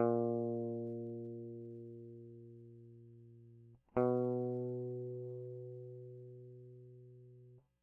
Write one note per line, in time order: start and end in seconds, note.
0.00 3.80 A#2
3.98 7.63 B2